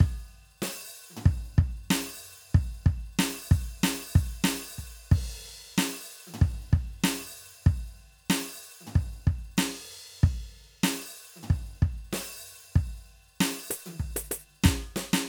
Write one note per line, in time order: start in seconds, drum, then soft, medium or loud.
0.01 kick loud
0.63 open hi-hat loud
0.63 snare loud
1.11 high tom medium
1.17 floor tom loud
1.26 kick loud
1.59 kick loud
1.91 open hi-hat loud
1.91 snare loud
2.55 kick loud
2.87 kick loud
3.19 open hi-hat loud
3.19 snare loud
3.47 snare soft
3.52 kick loud
3.84 open hi-hat loud
3.84 snare loud
4.16 kick loud
4.45 open hi-hat loud
4.45 snare loud
4.79 kick soft
5.12 kick loud
5.12 crash loud
5.78 open hi-hat loud
5.78 snare loud
6.28 high tom medium
6.34 floor tom loud
6.42 kick loud
6.73 kick loud
7.04 open hi-hat loud
7.04 snare loud
7.67 kick loud
8.30 open hi-hat loud
8.30 snare loud
8.81 high tom medium
8.87 floor tom loud
8.96 kick loud
9.28 kick loud
9.58 snare loud
9.58 crash loud
10.24 kick loud
10.84 open hi-hat loud
10.84 snare loud
11.37 high tom medium
11.43 floor tom loud
11.51 kick loud
11.83 kick loud
12.13 open hi-hat loud
12.13 snare loud
12.76 kick loud
12.87 snare soft
13.41 open hi-hat loud
13.41 snare loud
13.71 high tom loud
13.87 high tom loud
14.00 kick medium
14.17 high tom loud
14.32 high tom loud
14.64 kick loud
14.64 snare loud
14.97 snare loud
15.14 snare loud